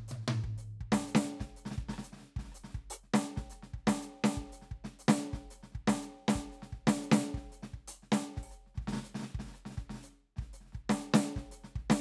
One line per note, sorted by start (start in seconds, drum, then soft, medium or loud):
0.01 cross-stick soft
0.08 hi-hat pedal medium
0.08 high tom medium
0.13 closed hi-hat soft
0.22 snare soft
0.28 high tom loud
0.44 kick soft
0.57 snare soft
0.57 hi-hat pedal medium
0.81 kick soft
0.92 snare loud
1.04 snare soft
1.04 hi-hat pedal medium
1.15 snare loud
1.28 snare soft
1.40 kick soft
1.40 snare soft
1.52 snare soft
1.54 snare soft
1.54 hi-hat pedal medium
1.54 open hi-hat soft
1.65 snare soft
1.71 snare medium
1.78 kick soft
1.78 cross-stick soft
1.89 snare medium
1.94 cross-stick medium
1.98 snare soft
2.03 cross-stick soft
2.03 hi-hat pedal medium
2.12 snare soft
2.16 snare soft
2.19 snare soft
2.21 snare soft
2.27 snare soft
2.36 kick soft
2.36 snare soft
2.44 snare soft
2.48 snare soft
2.52 cross-stick soft
2.52 hi-hat pedal medium
2.52 open hi-hat soft
2.64 snare soft
2.69 snare soft
2.75 kick soft
2.75 snare soft
2.90 open hi-hat loud
2.90 hi-hat pedal medium
3.03 snare soft
3.14 snare loud
3.37 kick soft
3.37 snare soft
3.44 snare soft
3.50 cross-stick soft
3.50 snare soft
3.50 hi-hat pedal medium
3.63 snare soft
3.74 kick soft
3.74 snare soft
3.87 snare loud
3.92 cross-stick soft
4.00 cross-stick soft
4.00 snare soft
4.00 hi-hat pedal medium
4.24 snare loud
4.29 cross-stick soft
4.37 kick soft
4.49 cross-stick soft
4.49 snare soft
4.49 hi-hat pedal medium
4.62 snare soft
4.66 cross-stick soft
4.71 kick soft
4.71 snare soft
4.84 snare soft
4.96 snare soft
4.96 hi-hat pedal medium
5.08 snare loud
5.14 cross-stick medium
5.23 snare soft
5.33 kick soft
5.33 snare soft
5.43 snare soft
5.51 cross-stick soft
5.51 snare soft
5.51 hi-hat pedal medium
5.63 snare soft
5.72 kick soft
5.72 snare soft
5.88 snare loud
5.94 snare soft
6.02 cross-stick soft
6.02 snare soft
6.02 hi-hat pedal medium
6.21 snare soft
6.28 snare loud
6.35 kick soft
6.35 cross-stick soft
6.45 snare soft
6.51 cross-stick soft
6.51 snare soft
6.51 hi-hat pedal soft
6.62 snare soft
6.73 kick soft
6.73 snare soft
6.76 snare soft
6.87 snare loud
7.01 snare soft
7.01 hi-hat pedal medium
7.12 snare loud
7.17 snare medium
7.34 kick soft
7.34 snare soft
7.42 snare soft
7.51 snare soft
7.51 hi-hat pedal medium
7.63 snare soft
7.74 kick soft
7.74 snare soft
7.77 snare soft
7.88 closed hi-hat loud
8.03 snare soft
8.12 snare loud
8.36 kick soft
8.36 snare soft
8.43 snare soft
8.43 open hi-hat soft
8.51 cross-stick soft
8.51 hi-hat pedal soft
8.66 snare soft
8.75 kick soft
8.75 snare soft
8.79 cross-stick soft
8.79 snare soft
8.88 snare medium
8.93 snare medium
8.96 snare medium
9.02 snare soft
9.02 hi-hat pedal medium
9.15 snare medium
9.19 snare medium
9.22 snare medium
9.29 snare soft
9.35 kick soft
9.39 snare soft
9.44 snare soft
9.47 snare soft
9.51 cross-stick soft
9.51 snare soft
9.51 hi-hat pedal soft
9.65 snare soft
9.70 cross-stick soft
9.70 snare soft
9.77 kick soft
9.77 snare soft
9.90 snare soft
9.93 snare soft
9.97 snare soft
10.00 snare soft
10.03 snare soft
10.03 closed hi-hat soft
10.03 hi-hat pedal medium
10.12 snare soft
10.36 kick soft
10.36 snare soft
10.39 snare soft
10.41 snare soft
10.50 snare soft
10.53 snare soft
10.53 hi-hat pedal medium
10.61 snare soft
10.63 snare soft
10.66 snare soft
10.72 kick soft
10.72 snare soft
10.77 cross-stick soft
10.89 snare loud
11.01 snare soft
11.01 hi-hat pedal medium
11.14 snare loud
11.19 snare medium
11.36 kick soft
11.36 snare soft
11.52 snare soft
11.52 hi-hat pedal medium
11.64 snare soft
11.76 kick soft
11.76 snare soft
11.90 snare loud